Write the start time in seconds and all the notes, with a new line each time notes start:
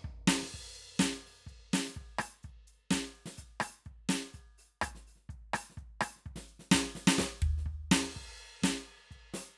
0.01 kick, hi-hat pedal
0.10 kick
0.28 snare, crash
0.43 snare
0.54 kick
0.75 open hi-hat
1.00 open hi-hat, kick, snare
1.13 snare
1.25 open hi-hat, snare
1.31 snare
1.35 snare
1.43 kick, snare
1.49 closed hi-hat
1.73 open hi-hat, snare
1.88 snare
1.96 kick, closed hi-hat
2.19 open hi-hat, cross-stick
2.43 kick, open hi-hat
2.67 open hi-hat
2.91 open hi-hat, kick, snare
3.15 open hi-hat
3.26 snare
3.37 closed hi-hat, kick
3.60 open hi-hat, cross-stick
3.85 kick, closed hi-hat
4.09 open hi-hat, snare
4.33 open hi-hat, kick
4.58 open hi-hat
4.82 open hi-hat, kick, cross-stick
4.95 snare
5.06 open hi-hat
5.16 snare
5.20 snare
5.24 snare
5.29 kick, closed hi-hat
5.54 open hi-hat, cross-stick
5.70 snare
5.77 kick, closed hi-hat
6.01 open hi-hat, cross-stick
6.16 snare
6.26 kick, closed hi-hat
6.36 snare
6.48 open hi-hat
6.60 snare
6.72 kick, snare
6.85 snare
6.95 snare
7.08 snare
7.19 kick, snare
7.34 snare
7.42 mid tom
7.58 snare
7.66 kick
7.91 snare, crash
8.16 kick
8.25 snare
8.37 open hi-hat
8.63 closed hi-hat, kick, snare
8.73 snare
8.88 open hi-hat
8.98 snare
9.11 kick, closed hi-hat
9.34 open hi-hat, snare